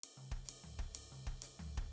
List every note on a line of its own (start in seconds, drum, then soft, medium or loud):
0.03 ride medium
0.17 high tom soft
0.31 kick soft
0.45 hi-hat pedal soft
0.45 ride medium
0.64 floor tom soft
0.79 kick soft
0.94 hi-hat pedal soft
0.94 ride medium
1.12 high tom soft
1.27 kick soft
1.42 hi-hat pedal medium
1.42 ride medium
1.59 floor tom medium
1.77 kick soft